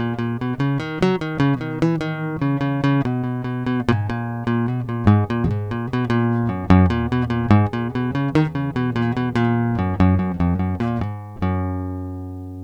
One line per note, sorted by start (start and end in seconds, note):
0.00 0.19 A#2
0.20 0.41 A#2
0.43 0.57 B2
0.62 0.80 C#3
0.80 0.93 A#2
0.80 1.02 D#3
1.04 1.22 C#3
1.04 1.21 F#3
1.23 1.43 D#3
1.42 1.56 C#3
1.56 1.93 B2
1.63 1.84 D#3
1.84 2.01 E3
2.02 2.43 D#3
2.44 2.60 C#3
2.63 2.84 C#3
2.86 3.05 C#3
3.07 3.25 B2
3.26 3.45 B2
3.47 3.68 B2
3.69 3.86 B2
3.95 4.15 G#2
4.11 4.47 A#2
4.49 4.69 A#2
4.69 4.86 B2
4.91 5.19 A#2
5.09 5.29 G#2
5.32 5.58 A#2
5.46 5.53 E2
5.54 5.78 G#2
5.73 5.93 A#2
5.95 6.10 B2
6.12 6.59 A#2
6.51 6.70 F#2
6.72 6.88 F#2
6.88 7.11 E2
6.88 7.12 A#2
7.14 7.30 B2
7.32 7.53 A#2
7.52 7.71 G#2
7.75 7.95 A#2
7.97 8.14 B2
8.17 8.36 C#3
8.37 8.53 D#3
8.57 8.74 C#3
8.78 8.95 B2
8.98 9.16 A#2
9.19 9.36 B2
9.37 9.93 A#2
9.81 9.98 F#2
10.02 10.21 F#2
10.22 10.39 F#2
10.42 10.59 F2
10.62 10.80 F#2
10.82 11.07 A#2
11.03 11.39 G#2
11.44 12.64 F#2